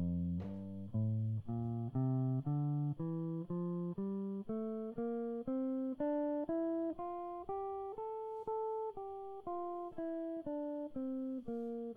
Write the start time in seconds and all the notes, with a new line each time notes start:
0.00 F2
0.46 G2
0.97 A2
1.51 A#2
1.97 C3
2.48 D3
3.01 E3
3.52 F3
3.99 G3
4.50 A3
4.99 A#3
5.48 C4
6.01 D4
6.50 E4
7.00 F4
7.50 G4
7.98 A4
8.48 A4
8.98 G4
9.48 F4
9.99 E4
10.47 D4
10.97 C4
11.49 A#3